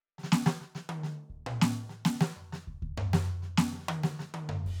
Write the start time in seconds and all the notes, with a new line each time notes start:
0.19 snare
0.24 snare
0.33 snare
0.47 snare
0.62 snare
0.76 snare
0.90 high tom
1.04 snare
1.30 kick
1.47 mid tom
1.62 snare
1.90 snare
2.06 snare
2.21 snare
2.37 floor tom
2.53 snare
2.68 kick
2.83 kick
2.98 floor tom
3.14 snare
3.25 snare
3.43 snare
3.58 snare
3.73 snare
3.79 snare
3.83 snare
3.89 high tom
4.04 snare
4.20 snare
4.34 high tom
4.50 floor tom
4.67 kick, crash